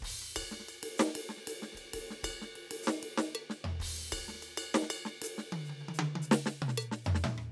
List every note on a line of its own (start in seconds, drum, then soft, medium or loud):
0.01 kick soft
0.01 hi-hat pedal soft
0.01 crash loud
0.08 kick soft
0.14 kick soft
0.22 cross-stick soft
0.36 kick soft
0.36 ride bell loud
0.51 snare soft
0.60 snare soft
0.69 ride bell medium
0.83 ride loud
0.98 snare loud
0.98 hi-hat pedal medium
1.08 snare soft
1.15 ride loud
1.29 snare soft
1.37 snare soft
1.47 hi-hat pedal medium
1.47 ride loud
1.62 snare soft
1.72 kick soft
1.72 snare soft
1.78 ride bell medium
1.94 kick soft
1.94 hi-hat pedal soft
1.94 ride loud
2.11 snare soft
2.24 kick soft
2.24 ride bell loud
2.42 snare soft
2.56 ride medium
2.71 ride loud
2.83 hi-hat pedal medium
2.87 snare loud
3.03 ride loud
3.18 snare loud
3.35 percussion loud
3.50 snare medium
3.64 floor tom loud
3.80 kick soft
3.80 hi-hat pedal soft
3.80 crash loud
3.99 snare soft
4.12 kick soft
4.12 ride bell loud
4.18 kick soft
4.28 snare soft
4.34 snare soft
4.38 snare soft
4.43 ride bell medium
4.58 ride bell loud
4.75 snare loud
4.82 snare soft
4.90 ride bell loud
5.05 snare medium
5.22 hi-hat pedal loud
5.22 ride loud
5.38 snare medium
5.52 high tom loud
5.65 hi-hat pedal soft
5.70 high tom medium
5.80 high tom soft
5.80 crash soft
5.89 open hi-hat soft
5.89 high tom medium
5.94 hi-hat pedal medium
5.99 high tom loud
6.16 high tom loud
6.22 hi-hat pedal medium
6.31 snare loud
6.46 snare medium
6.62 mid tom loud
6.68 snare soft
6.78 hi-hat pedal medium
6.78 percussion loud
6.92 snare medium
7.05 floor tom loud
7.05 hi-hat pedal soft
7.15 snare medium
7.24 floor tom loud
7.34 hi-hat pedal soft
7.38 cross-stick medium